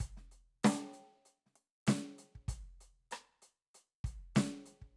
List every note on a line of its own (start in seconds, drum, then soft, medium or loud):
0.00 closed hi-hat medium
0.00 kick soft
0.05 kick soft
0.17 snare soft
0.31 closed hi-hat soft
0.64 closed hi-hat medium
0.64 snare loud
0.93 closed hi-hat soft
1.25 closed hi-hat soft
1.46 snare soft
1.49 snare soft
1.56 closed hi-hat soft
1.87 closed hi-hat medium
1.87 snare loud
2.18 closed hi-hat soft
2.35 kick soft
2.48 closed hi-hat medium
2.48 kick soft
2.81 closed hi-hat soft
3.11 closed hi-hat medium
3.11 cross-stick medium
3.42 closed hi-hat soft
3.74 closed hi-hat soft
4.04 closed hi-hat soft
4.04 kick soft
4.35 closed hi-hat medium
4.35 snare loud
4.66 closed hi-hat soft
4.82 kick soft